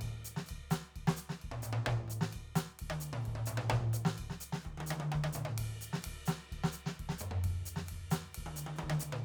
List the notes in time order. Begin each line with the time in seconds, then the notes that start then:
0.01 kick, ride bell
0.25 hi-hat pedal, ride
0.36 snare
0.46 hi-hat pedal, ride bell
0.51 kick
0.71 snare, hi-hat pedal
0.96 kick, ride bell
1.07 snare
1.16 hi-hat pedal, ride
1.29 snare
1.42 kick, ride bell
1.52 mid tom
1.62 hi-hat pedal, mid tom
1.73 mid tom
1.86 kick, mid tom
1.95 kick
2.08 hi-hat pedal, mid tom
2.21 snare
2.31 hi-hat pedal, ride bell
2.36 kick
2.56 snare, hi-hat pedal
2.79 kick, ride
2.90 kick, high tom
3.00 hi-hat pedal, ride
3.13 mid tom
3.21 hi-hat pedal
3.25 kick, ride
3.35 mid tom
3.46 hi-hat pedal, mid tom
3.57 mid tom
3.70 kick, mid tom
3.93 hi-hat pedal, mid tom
4.05 snare
4.15 hi-hat pedal, ride bell
4.20 kick
4.30 snare
4.40 hi-hat pedal, ride bell
4.53 snare
4.62 hi-hat pedal, high tom
4.66 kick
4.74 kick
4.78 high tom
4.80 high tom
4.86 hi-hat pedal
4.91 high tom
5.00 high tom
5.12 kick, high tom
5.21 kick, high tom
5.33 hi-hat pedal, mid tom
5.45 mid tom
5.58 kick, ride
5.81 hi-hat pedal, ride
5.93 snare
6.02 hi-hat pedal, ride
6.07 kick
6.26 snare, hi-hat pedal
6.52 kick, ride bell
6.64 snare
6.72 hi-hat pedal, ride
6.86 snare
6.99 kick, ride
7.09 snare
7.18 floor tom, hi-hat pedal
7.31 floor tom
7.44 kick, ride
7.54 kick
7.66 hi-hat pedal, ride
7.76 snare
7.86 hi-hat pedal, ride
7.92 kick
8.11 snare, hi-hat pedal
8.31 hi-hat pedal, ride
8.38 kick
8.46 kick, high tom
8.56 hi-hat pedal, high tom
8.66 high tom
8.76 hi-hat pedal, high tom, crash
8.83 kick
8.90 high tom
9.00 hi-hat pedal, high tom
9.12 mid tom